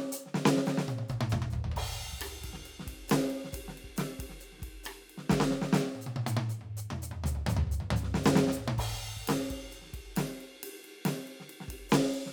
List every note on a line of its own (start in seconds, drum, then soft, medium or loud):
0.02 cross-stick soft
0.12 closed hi-hat loud
0.26 snare soft
0.35 snare medium
0.40 hi-hat pedal soft
0.46 snare loud
0.57 snare medium
0.66 snare medium
0.66 hi-hat pedal medium
0.78 snare medium
0.86 kick soft
0.86 hi-hat pedal soft
0.86 high tom loud
0.99 high tom medium
1.09 kick soft
1.09 hi-hat pedal soft
1.09 high tom loud
1.15 kick soft
1.21 high tom loud
1.30 kick soft
1.30 hi-hat pedal medium
1.30 mid tom loud
1.38 kick soft
1.42 mid tom medium
1.51 kick soft
1.51 floor tom medium
1.51 hi-hat pedal soft
1.65 floor tom medium
1.72 floor tom medium
1.77 kick medium
1.77 hi-hat pedal soft
1.77 crash loud
1.90 kick soft
2.14 kick soft
2.21 cross-stick medium
2.21 hi-hat pedal medium
2.21 ride loud
2.44 kick soft
2.44 ride medium
2.50 kick soft
2.50 snare soft
2.65 hi-hat pedal soft
2.65 ride medium
2.80 snare soft
2.87 kick soft
2.87 ride medium
2.93 kick soft
3.09 snare loud
3.09 hi-hat pedal medium
3.09 ride loud
3.30 ride medium
3.45 snare soft
3.53 kick soft
3.53 hi-hat pedal medium
3.53 ride loud
3.60 kick soft
3.68 snare soft
3.78 ride medium
3.84 kick soft
3.90 kick soft
3.97 snare medium
3.97 hi-hat pedal medium
3.97 ride loud
4.19 kick soft
4.19 ride medium
4.26 kick soft
4.26 snare soft
4.41 hi-hat pedal medium
4.41 ride medium
4.53 snare soft
4.59 kick soft
4.59 snare soft
4.64 ride medium
4.69 kick soft
4.84 cross-stick medium
4.84 hi-hat pedal medium
4.84 ride loud
5.10 ride medium
5.18 snare soft
5.30 kick soft
5.30 snare loud
5.30 hi-hat pedal medium
5.38 kick soft
5.38 snare loud
5.51 snare medium
5.62 snare medium
5.73 snare loud
5.73 hi-hat pedal medium
5.86 cross-stick soft
5.95 high tom medium
6.02 hi-hat pedal medium
6.07 high tom medium
6.17 high tom loud
6.27 hi-hat pedal loud
6.27 high tom loud
6.37 high tom loud
6.49 hi-hat pedal medium
6.49 high tom soft
6.61 mid tom medium
6.76 hi-hat pedal loud
6.76 mid tom soft
6.91 mid tom loud
7.03 hi-hat pedal loud
7.12 mid tom medium
7.24 floor tom loud
7.24 hi-hat pedal loud
7.35 mid tom medium
7.47 hi-hat pedal medium
7.47 floor tom loud
7.57 floor tom loud
7.68 floor tom soft
7.72 hi-hat pedal medium
7.81 floor tom medium
7.91 floor tom loud
7.97 hi-hat pedal medium
8.04 snare soft
8.15 snare loud
8.24 snare loud
8.24 hi-hat pedal medium
8.36 snare loud
8.48 snare medium
8.52 kick soft
8.52 hi-hat pedal loud
8.57 high tom medium
8.68 high tom loud
8.78 kick medium
8.78 hi-hat pedal loud
8.78 crash loud
8.93 kick soft
9.00 hi-hat pedal soft
9.06 kick soft
9.17 kick soft
9.23 kick soft
9.28 snare loud
9.28 hi-hat pedal medium
9.28 ride loud
9.51 kick soft
9.51 ride medium
9.57 kick soft
9.69 snare soft
9.69 hi-hat pedal medium
9.69 ride medium
9.82 snare soft
9.87 snare soft
9.94 kick soft
9.94 ride medium
10.00 kick soft
10.16 snare loud
10.16 hi-hat pedal medium
10.16 ride loud
10.41 ride soft
10.64 ride loud
10.85 ride medium
11.06 snare loud
11.06 ride loud
11.28 ride soft
11.40 snare soft
11.50 ride medium
11.61 snare soft
11.66 kick soft
11.66 hi-hat pedal soft
11.71 ride medium
11.90 snare loud
11.90 hi-hat pedal medium
11.90 ride medium
12.14 ride medium
12.26 snare soft